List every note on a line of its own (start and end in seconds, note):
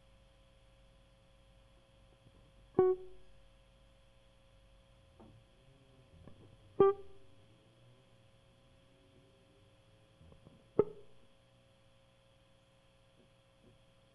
2.79 2.95 F#4
6.81 6.93 G4
10.80 10.87 G#4